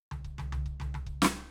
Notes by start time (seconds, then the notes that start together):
0.11 floor tom, high tom
0.24 kick
0.38 floor tom, high tom
0.52 floor tom, high tom
0.66 kick
0.80 floor tom, high tom
0.94 floor tom, high tom
1.06 kick
1.22 snare
1.24 snare